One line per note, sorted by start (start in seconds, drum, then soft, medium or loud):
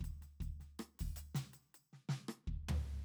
0.01 kick soft
0.01 percussion soft
0.22 snare soft
0.22 percussion soft
0.41 kick soft
0.41 percussion soft
0.60 snare soft
0.60 percussion soft
0.79 cross-stick medium
0.79 percussion soft
1.00 kick soft
1.00 percussion medium
1.16 percussion medium
1.18 percussion soft
1.35 snare medium
1.35 percussion medium
1.54 percussion soft
1.75 percussion soft
1.93 snare soft
2.09 snare medium
2.29 cross-stick medium
2.48 kick soft
2.69 floor tom medium